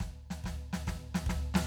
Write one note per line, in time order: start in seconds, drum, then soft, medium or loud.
0.04 kick soft
0.04 snare soft
0.04 floor tom medium
0.30 snare medium
0.30 floor tom medium
0.44 kick soft
0.44 snare medium
0.44 floor tom medium
0.73 snare medium
0.73 floor tom medium
0.87 kick soft
0.87 snare medium
0.87 floor tom medium
1.14 snare medium
1.14 floor tom medium
1.26 kick soft
1.26 snare medium
1.26 floor tom medium
1.54 snare loud
1.54 floor tom loud